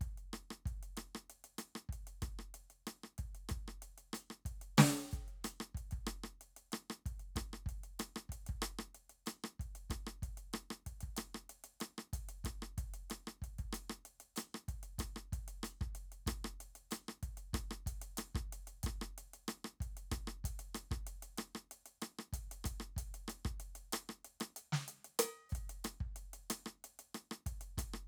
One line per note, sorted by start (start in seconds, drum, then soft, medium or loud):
0.01 kick medium
0.01 closed hi-hat soft
0.18 closed hi-hat soft
0.33 cross-stick medium
0.33 closed hi-hat soft
0.51 cross-stick medium
0.66 kick medium
0.66 closed hi-hat soft
0.83 closed hi-hat soft
0.97 cross-stick medium
0.97 closed hi-hat soft
1.15 cross-stick medium
1.30 closed hi-hat soft
1.44 closed hi-hat soft
1.59 cross-stick medium
1.59 closed hi-hat medium
1.75 cross-stick medium
1.89 kick medium
1.89 closed hi-hat soft
2.07 closed hi-hat soft
2.22 kick medium
2.22 cross-stick soft
2.22 closed hi-hat soft
2.39 cross-stick soft
2.54 closed hi-hat soft
2.70 closed hi-hat soft
2.87 cross-stick medium
2.87 closed hi-hat soft
3.04 cross-stick soft
3.18 kick medium
3.18 closed hi-hat soft
3.35 closed hi-hat soft
3.49 kick medium
3.49 cross-stick medium
3.49 closed hi-hat soft
3.68 cross-stick soft
3.82 closed hi-hat soft
3.98 closed hi-hat soft
4.13 closed hi-hat medium
4.13 cross-stick medium
4.30 cross-stick soft
4.45 kick medium
4.45 closed hi-hat soft
4.62 closed hi-hat soft
4.78 open hi-hat loud
4.78 snare loud
5.11 kick medium
5.11 closed hi-hat soft
5.11 hi-hat pedal soft
5.28 closed hi-hat soft
5.44 closed hi-hat medium
5.44 cross-stick medium
5.60 cross-stick medium
5.75 kick medium
5.75 closed hi-hat soft
5.91 kick medium
5.91 closed hi-hat soft
6.07 cross-stick medium
6.07 closed hi-hat soft
6.24 cross-stick medium
6.41 closed hi-hat soft
6.57 closed hi-hat soft
6.72 cross-stick medium
6.72 closed hi-hat soft
6.90 cross-stick medium
7.06 kick medium
7.06 closed hi-hat soft
7.20 closed hi-hat soft
7.36 kick medium
7.36 cross-stick medium
7.36 closed hi-hat soft
7.53 cross-stick soft
7.66 kick medium
7.66 closed hi-hat soft
7.84 closed hi-hat soft
7.99 cross-stick medium
7.99 closed hi-hat medium
8.16 cross-stick medium
8.29 kick soft
8.29 closed hi-hat soft
8.47 kick medium
8.47 closed hi-hat soft
8.62 cross-stick medium
8.62 closed hi-hat soft
8.79 cross-stick medium
8.95 closed hi-hat soft
9.10 closed hi-hat soft
9.26 closed hi-hat soft
9.26 cross-stick medium
9.44 cross-stick medium
9.60 kick medium
9.60 closed hi-hat soft
9.75 closed hi-hat soft
9.90 kick medium
9.90 cross-stick medium
9.90 closed hi-hat soft
10.07 cross-stick medium
10.23 kick medium
10.23 closed hi-hat soft
10.37 closed hi-hat soft
10.53 cross-stick medium
10.53 closed hi-hat soft
10.71 cross-stick medium
10.86 kick soft
10.86 closed hi-hat soft
11.01 kick soft
11.01 closed hi-hat soft
11.17 cross-stick medium
11.17 closed hi-hat medium
11.35 cross-stick medium
11.50 closed hi-hat soft
11.64 closed hi-hat soft
11.80 cross-stick medium
11.80 closed hi-hat soft
11.98 cross-stick medium
12.13 kick medium
12.13 closed hi-hat medium
12.29 closed hi-hat soft
12.44 kick medium
12.44 cross-stick medium
12.44 closed hi-hat soft
12.62 cross-stick medium
12.78 kick medium
12.78 closed hi-hat soft
12.94 closed hi-hat soft
13.10 cross-stick medium
13.10 closed hi-hat soft
13.27 cross-stick medium
13.42 kick soft
13.42 closed hi-hat soft
13.59 kick medium
13.59 closed hi-hat soft
13.73 cross-stick medium
13.73 closed hi-hat medium
13.90 cross-stick medium
14.05 closed hi-hat soft
14.20 closed hi-hat soft
14.36 closed hi-hat medium
14.36 cross-stick medium
14.55 cross-stick medium
14.68 kick medium
14.68 closed hi-hat soft
14.83 closed hi-hat soft
14.99 kick medium
14.99 cross-stick medium
14.99 closed hi-hat medium
15.16 cross-stick medium
15.33 kick medium
15.33 closed hi-hat soft
15.48 closed hi-hat soft
15.63 closed hi-hat soft
15.63 cross-stick medium
15.81 kick medium
15.81 cross-stick soft
15.95 closed hi-hat soft
16.12 closed hi-hat soft
16.27 kick medium
16.27 cross-stick medium
16.27 closed hi-hat medium
16.45 cross-stick medium
16.61 closed hi-hat soft
16.75 closed hi-hat soft
16.91 closed hi-hat medium
16.91 cross-stick medium
17.09 cross-stick medium
17.23 kick medium
17.23 closed hi-hat soft
17.37 closed hi-hat soft
17.54 kick medium
17.54 cross-stick medium
17.54 closed hi-hat soft
17.71 cross-stick medium
17.86 kick medium
17.86 closed hi-hat medium
18.02 closed hi-hat soft
18.17 cross-stick medium
18.17 closed hi-hat medium
18.35 kick medium
18.35 cross-stick medium
18.53 closed hi-hat soft
18.67 closed hi-hat soft
18.83 kick medium
18.83 cross-stick medium
18.83 closed hi-hat medium
19.02 cross-stick medium
19.18 closed hi-hat soft
19.34 closed hi-hat soft
19.48 cross-stick medium
19.48 closed hi-hat soft
19.65 cross-stick medium
19.81 kick medium
19.81 closed hi-hat soft
19.97 closed hi-hat soft
20.12 kick medium
20.12 cross-stick medium
20.12 closed hi-hat soft
20.28 cross-stick medium
20.44 kick medium
20.44 closed hi-hat medium
20.59 closed hi-hat soft
20.75 cross-stick medium
20.75 closed hi-hat soft
20.91 kick medium
20.91 cross-stick medium
21.07 closed hi-hat soft
21.23 closed hi-hat soft
21.38 cross-stick medium
21.38 closed hi-hat soft
21.55 cross-stick medium
21.71 closed hi-hat soft
21.86 closed hi-hat soft
22.02 cross-stick medium
22.02 closed hi-hat soft
22.19 cross-stick medium
22.33 kick medium
22.33 closed hi-hat medium
22.51 closed hi-hat soft
22.64 kick medium
22.64 cross-stick medium
22.64 closed hi-hat medium
22.80 cross-stick medium
22.97 kick medium
22.97 closed hi-hat medium
23.14 closed hi-hat soft
23.28 cross-stick medium
23.28 closed hi-hat soft
23.45 kick medium
23.45 cross-stick medium
23.60 closed hi-hat soft
23.75 closed hi-hat soft
23.93 cross-stick medium
23.93 closed hi-hat medium
24.09 cross-stick medium
24.25 closed hi-hat soft
24.40 cross-stick medium
24.40 closed hi-hat soft
24.56 closed hi-hat medium
24.72 snare medium
24.88 closed hi-hat medium
25.05 closed hi-hat soft
25.19 cross-stick medium
25.19 open hi-hat loud
25.24 cross-stick soft
25.49 kick medium
25.49 hi-hat pedal soft
25.55 closed hi-hat soft
25.70 closed hi-hat soft
25.84 cross-stick medium
25.84 closed hi-hat medium
26.01 kick medium
26.16 closed hi-hat soft
26.34 closed hi-hat soft
26.50 cross-stick medium
26.50 closed hi-hat medium
26.66 cross-stick medium
26.84 closed hi-hat soft
26.99 closed hi-hat soft
27.15 cross-stick medium
27.15 closed hi-hat soft
27.31 cross-stick medium
27.46 kick medium
27.46 closed hi-hat soft
27.61 closed hi-hat soft
27.78 kick medium
27.78 cross-stick medium
27.78 closed hi-hat medium
27.94 cross-stick medium